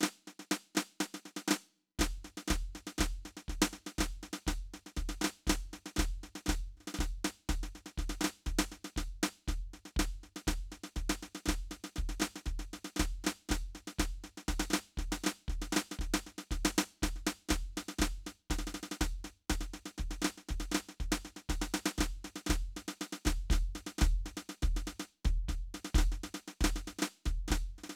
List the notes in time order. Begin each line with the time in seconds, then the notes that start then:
0.01 snare
0.03 snare
0.28 snare
0.40 snare
0.52 snare
0.75 snare
0.77 snare
1.01 snare
1.14 snare
1.26 snare
1.37 snare
1.48 snare
1.51 snare
1.99 kick, snare
2.01 snare
2.25 snare
2.38 snare
2.48 kick, snare
2.51 snare
2.75 snare
2.87 snare
2.98 kick, snare
3.01 snare
3.26 snare
3.37 snare
3.49 kick, snare
3.62 snare
3.73 snare
3.87 snare
3.99 kick, snare
4.01 snare
4.23 snare
4.47 kick, snare
4.74 snare
4.87 snare
4.97 kick, snare
5.09 snare
5.22 snare
5.25 snare
5.47 kick, snare
5.50 snare
5.73 snare
5.86 snare
5.97 kick, snare
6.00 snare
6.24 snare
6.36 snare
6.47 kick, snare
6.49 snare
6.77 snare
6.81 snare
6.88 snare
6.94 snare
6.99 kick, snare
7.25 snare
7.49 kick, snare
7.63 snare
7.76 snare
7.86 snare
7.98 kick, snare
8.10 snare
8.21 snare
8.25 snare
8.47 kick, snare
8.59 snare
8.72 snare
8.85 snare
8.97 kick, snare
9.23 snare
9.48 kick, snare
9.74 snare
9.86 snare
9.97 kick, snare
10.24 snare
10.36 snare
10.48 kick, snare
10.72 snare
10.84 snare
10.96 kick, snare
11.10 snare
11.23 snare
11.35 snare
11.46 kick, snare
11.49 snare
11.71 snare
11.84 snare
11.96 kick, snare
12.09 snare
12.20 snare
12.22 snare
12.36 snare
12.46 kick, snare
12.60 snare
12.74 snare
12.85 snare
12.97 kick, snare
13.00 snare
13.24 snare
13.27 snare
13.49 kick, snare
13.52 snare
13.75 snare
13.88 snare
13.99 kick, snare
14.24 snare
14.38 snare
14.49 kick, snare
14.60 snare
14.71 snare
14.74 snare
14.98 kick, snare
15.12 snare
15.24 snare
15.27 snare
15.49 kick, snare
15.62 snare
15.73 snare
15.77 snare
15.92 snare
15.99 kick, snare
16.14 snare
16.27 snare
16.39 snare
16.51 kick, snare
16.65 snare
16.78 snare
17.03 kick, snare
17.16 snare
17.27 snare
17.49 snare
17.51 kick, snare
17.77 snare
17.89 snare
18.00 kick, snare
18.27 snare
18.51 kick, snare
18.59 snare
18.67 snare
18.75 snare
18.83 snare
18.92 snare
19.01 kick, snare
19.25 snare
19.50 kick, snare
19.61 snare
19.74 snare
19.86 snare
19.98 kick, snare
20.11 snare
20.22 snare
20.25 snare
20.38 snare
20.49 kick, snare
20.60 snare
20.72 snare
20.75 snare
20.89 snare
21.01 kick, snare
21.12 snare
21.25 snare
21.37 snare
21.49 kick, snare
21.62 snare
21.74 snare
21.86 snare
21.98 kick, snare
22.01 snare
22.25 snare
22.36 snare
22.47 kick, snare
22.51 snare
22.77 snare
22.88 snare
23.01 snare
23.13 snare
23.26 kick, snare
23.27 snare
23.51 kick, snare
23.76 snare
23.87 snare
23.99 snare
24.02 kick, snare
24.26 snare
24.37 snare
24.50 snare
24.63 kick, snare
24.77 snare
24.87 snare
25.00 snare
25.25 kick, snare
25.49 kick, snare
25.75 snare
25.85 snare
25.95 kick, snare
25.99 snare
26.12 snare
26.24 snare
26.35 snare
26.48 snare
26.61 kick, snare
26.64 snare
26.76 snare
26.88 snare
26.99 snare
27.02 snare
27.26 kick, snare
27.48 kick, snare
27.52 snare
27.79 snare
27.84 snare
27.90 snare